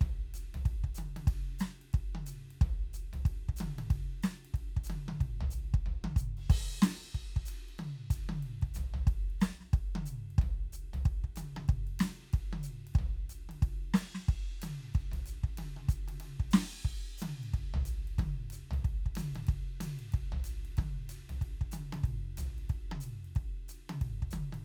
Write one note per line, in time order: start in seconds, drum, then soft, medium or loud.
0.01 kick medium
0.01 floor tom medium
0.01 ride medium
0.34 hi-hat pedal medium
0.34 ride medium
0.54 floor tom medium
0.54 ride medium
0.65 kick medium
0.65 ride medium
0.84 kick medium
0.95 hi-hat pedal medium
0.95 high tom medium
0.95 ride medium
1.16 high tom medium
1.16 ride medium
1.27 kick medium
1.27 ride medium
1.50 kick soft
1.59 snare medium
1.59 hi-hat pedal medium
1.59 ride medium
1.65 kick soft
1.82 ride soft
1.93 kick medium
1.93 ride medium
2.15 high tom loud
2.26 hi-hat pedal medium
2.26 ride medium
2.34 kick soft
2.51 ride soft
2.61 kick loud
2.61 floor tom loud
2.61 ride soft
2.82 kick soft
2.94 hi-hat pedal medium
2.94 ride medium
3.13 floor tom medium
3.13 ride medium
3.25 kick medium
3.25 ride medium
3.49 kick medium
3.56 hi-hat pedal medium
3.56 ride medium
3.60 high tom loud
3.79 high tom medium
3.79 ride medium
3.90 kick medium
3.90 ride medium
4.23 snare loud
4.23 hi-hat pedal medium
4.23 ride medium
4.45 ride medium
4.54 kick medium
4.54 ride medium
4.77 kick medium
4.84 hi-hat pedal medium
4.84 ride medium
4.90 high tom loud
5.08 high tom loud
5.21 kick medium
5.21 ride medium
5.41 floor tom loud
5.51 hi-hat pedal medium
5.51 ride medium
5.74 kick medium
5.86 floor tom medium
6.04 high tom loud
6.16 kick medium
6.16 hi-hat pedal medium
6.37 ride medium
6.50 kick loud
6.50 crash loud
6.82 snare loud
6.82 hi-hat pedal medium
6.82 ride loud
7.04 ride soft
7.15 kick medium
7.15 ride soft
7.36 kick medium
7.46 hi-hat pedal medium
7.46 ride medium
7.69 ride soft
7.79 high tom loud
7.79 ride soft
8.10 kick medium
8.10 hi-hat pedal medium
8.10 ride medium
8.29 high tom loud
8.43 ride medium
8.62 kick medium
8.62 ride soft
8.74 floor tom loud
8.74 hi-hat pedal medium
8.74 ride medium
8.94 floor tom loud
9.07 kick medium
9.07 ride medium
9.30 ride soft
9.40 snare loud
9.40 hi-hat pedal medium
9.40 ride soft
9.60 snare soft
9.73 kick medium
9.73 ride medium
9.95 high tom loud
10.06 hi-hat pedal medium
10.06 ride medium
10.31 ride soft
10.38 kick loud
10.38 floor tom loud
10.38 ride soft
10.73 kick soft
10.73 hi-hat pedal medium
10.73 ride medium
10.94 floor tom loud
10.94 ride soft
11.05 kick medium
11.05 ride soft
11.24 kick soft
11.36 hi-hat pedal medium
11.36 high tom loud
11.36 ride medium
11.57 high tom medium
11.68 kick medium
11.68 ride soft
11.87 ride soft
11.99 snare loud
11.99 hi-hat pedal medium
11.99 ride medium
12.22 snare soft
12.33 kick medium
12.33 ride medium
12.53 high tom loud
12.63 hi-hat pedal medium
12.63 ride medium
12.87 ride medium
12.94 kick medium
12.94 ride soft
12.99 floor tom loud
13.29 kick soft
13.29 hi-hat pedal medium
13.29 ride medium
13.49 high tom medium
13.49 ride medium
13.62 kick medium
13.62 ride medium
13.94 snare loud
13.94 hi-hat pedal medium
13.94 ride medium
14.15 snare medium
14.29 kick medium
14.29 ride soft
14.62 hi-hat pedal medium
14.62 high tom loud
14.62 ride medium
14.85 high tom soft
14.94 kick medium
14.94 ride soft
14.99 hi-hat pedal soft
15.12 floor tom medium
15.12 ride medium
15.26 hi-hat pedal medium
15.26 ride medium
15.44 kick medium
15.58 high tom loud
15.58 ride medium
15.77 high tom medium
15.89 kick medium
15.89 hi-hat pedal medium
15.89 ride medium
16.08 high tom medium
16.08 ride medium
16.20 high tom medium
16.20 ride medium
16.40 kick medium
16.51 snare loud
16.51 hi-hat pedal medium
16.51 crash medium
16.85 kick medium
16.89 ride soft
17.18 hi-hat pedal medium
17.22 high tom loud
17.22 ride medium
17.43 ride soft
17.54 kick medium
17.54 ride soft
17.74 floor tom loud
17.85 hi-hat pedal medium
17.85 ride medium
18.08 ride soft
18.18 kick medium
18.18 high tom loud
18.18 ride medium
18.50 hi-hat pedal medium
18.50 ride medium
18.71 floor tom loud
18.71 ride soft
18.85 kick medium
18.85 ride soft
19.06 kick medium
19.16 hi-hat pedal medium
19.16 high tom loud
19.16 ride medium
19.26 kick soft
19.35 high tom medium
19.35 ride medium
19.47 kick medium
19.47 ride medium
19.81 hi-hat pedal medium
19.81 high tom loud
19.81 ride loud
19.99 ride medium
20.12 kick medium
20.12 ride medium
20.32 floor tom loud
20.44 hi-hat pedal medium
20.44 ride medium
20.65 ride soft
20.77 kick medium
20.77 high tom loud
20.77 ride medium
21.09 hi-hat pedal medium
21.09 ride medium
21.29 floor tom medium
21.29 ride medium
21.41 kick medium
21.41 ride medium
21.61 kick medium
21.72 hi-hat pedal medium
21.72 high tom loud
21.72 ride medium
21.93 high tom loud
21.93 ride medium
22.04 kick medium
22.04 ride medium
22.37 floor tom loud
22.37 hi-hat pedal medium
22.37 ride medium
22.58 ride soft
22.70 kick medium
22.70 ride medium
22.92 high tom loud
23.00 hi-hat pedal medium
23.00 ride medium
23.25 ride soft
23.35 kick medium
23.35 ride medium
23.69 hi-hat pedal medium
23.69 ride medium
23.90 high tom loud
23.90 ride medium
24.01 kick medium
24.01 ride medium
24.22 kick medium
24.31 hi-hat pedal medium
24.31 high tom loud
24.31 ride medium
24.53 high tom medium
24.53 ride medium